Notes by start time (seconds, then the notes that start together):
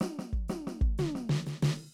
0.00 snare, floor tom, hi-hat pedal
0.19 snare, floor tom
0.33 kick
0.48 snare, floor tom, hi-hat pedal
0.66 snare, floor tom
0.81 kick
0.98 snare, floor tom, hi-hat pedal
1.15 snare
1.29 snare
1.46 snare, hi-hat pedal
1.62 open hi-hat, snare